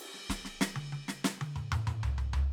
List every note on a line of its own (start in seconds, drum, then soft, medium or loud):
0.00 ride loud
0.14 snare soft
0.18 snare soft
0.22 snare soft
0.25 snare soft
0.29 kick soft
0.29 snare medium
0.45 snare medium
0.61 snare loud
0.76 high tom loud
0.92 high tom medium
1.08 snare medium
1.24 snare loud
1.41 open hi-hat soft
1.41 high tom loud
1.56 mid tom loud
1.72 mid tom loud
1.87 mid tom loud
2.03 floor tom loud
2.18 floor tom loud
2.33 floor tom loud